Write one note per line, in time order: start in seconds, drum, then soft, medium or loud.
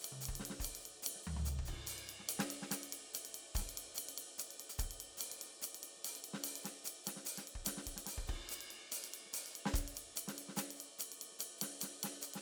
0.01 hi-hat pedal medium
0.01 ride medium
0.12 high tom soft
0.21 hi-hat pedal loud
0.26 kick soft
0.26 ride medium
0.35 hi-hat pedal soft
0.35 ride medium
0.40 snare soft
0.45 ride medium
0.50 snare soft
0.60 kick soft
0.60 hi-hat pedal medium
0.65 ride medium
0.75 ride medium
0.81 hi-hat pedal soft
0.85 ride medium
1.03 hi-hat pedal loud
1.03 ride loud
1.15 snare soft
1.23 floor tom medium
1.23 hi-hat pedal soft
1.37 floor tom medium
1.45 hi-hat pedal loud
1.45 high tom soft
1.59 kick soft
1.65 kick soft
1.65 hi-hat pedal medium
1.65 ride medium
1.87 hi-hat pedal loud
1.87 ride medium
1.98 ride medium
2.07 hi-hat pedal soft
2.07 ride medium
2.19 snare soft
2.29 hi-hat pedal loud
2.29 ride loud
2.38 kick soft
2.38 snare medium
2.38 ride medium
2.48 hi-hat pedal soft
2.48 ride medium
2.62 snare soft
2.71 snare soft
2.71 hi-hat pedal loud
2.71 ride loud
2.83 ride medium
2.90 hi-hat pedal soft
2.90 ride medium
3.14 hi-hat pedal medium
3.14 ride loud
3.25 ride medium
3.34 ride medium
3.55 kick medium
3.55 snare soft
3.55 hi-hat pedal medium
3.55 ride medium
3.69 ride medium
3.77 ride medium
3.95 hi-hat pedal medium
3.95 ride loud
4.09 ride medium
4.18 ride medium
4.38 hi-hat pedal loud
4.38 ride medium
4.51 ride medium
4.60 ride medium
4.69 open hi-hat medium
4.78 kick medium
4.78 hi-hat pedal medium
4.78 ride medium
4.91 ride medium
5.00 ride medium
5.17 hi-hat pedal medium
5.17 ride loud
5.32 ride medium
5.41 ride medium
5.62 hi-hat pedal loud
5.62 ride medium
5.75 ride medium
5.83 ride medium
5.96 snare soft
6.04 hi-hat pedal loud
6.04 ride loud
6.15 ride medium
6.24 ride medium
6.33 snare soft
6.44 hi-hat pedal medium
6.44 ride loud
6.56 ride medium
6.63 snare soft
6.63 hi-hat pedal soft
6.63 ride medium
6.84 hi-hat pedal loud
6.84 ride medium
7.04 snare soft
7.04 hi-hat pedal soft
7.04 ride loud
7.16 snare soft
7.25 hi-hat pedal loud
7.25 ride medium
7.37 snare soft
7.37 ride medium
7.43 hi-hat pedal soft
7.47 ride medium
7.55 kick soft
7.65 snare soft
7.65 hi-hat pedal loud
7.65 ride loud
7.77 snare soft
7.84 kick soft
7.84 hi-hat pedal soft
7.84 ride medium
7.96 snare soft
7.96 ride medium
8.06 snare soft
8.06 hi-hat pedal medium
8.06 ride medium
8.18 kick soft
8.27 kick soft
8.27 hi-hat pedal soft
8.27 ride medium
8.49 hi-hat pedal loud
8.49 ride medium
8.61 ride medium
8.70 hi-hat pedal soft
8.70 ride medium
8.92 hi-hat pedal loud
8.92 ride medium
9.04 ride medium
9.11 hi-hat pedal soft
9.11 ride medium
9.26 snare soft
9.33 hi-hat pedal loud
9.33 ride medium
9.46 ride medium
9.53 hi-hat pedal soft
9.53 ride medium
9.66 snare medium
9.74 kick medium
9.74 hi-hat pedal loud
9.74 ride medium
9.88 ride medium
9.95 hi-hat pedal medium
9.95 ride medium
10.16 hi-hat pedal loud
10.16 ride loud
10.28 snare soft
10.28 ride medium
10.35 hi-hat pedal soft
10.35 ride medium
10.48 snare soft
10.56 snare medium
10.56 hi-hat pedal loud
10.56 ride loud
10.71 ride medium
10.76 hi-hat pedal soft
10.80 ride medium
10.99 hi-hat pedal loud
10.99 ride loud
11.12 ride medium
11.18 hi-hat pedal soft
11.18 ride medium
11.31 snare soft
11.39 hi-hat pedal loud
11.39 ride loud
11.58 snare soft
11.58 hi-hat pedal soft
11.58 ride loud
11.81 snare soft
11.81 hi-hat pedal loud
11.81 ride loud
12.00 hi-hat pedal soft
12.00 ride loud
12.04 snare soft
12.22 hi-hat pedal medium
12.22 ride medium
12.34 snare soft
12.34 ride medium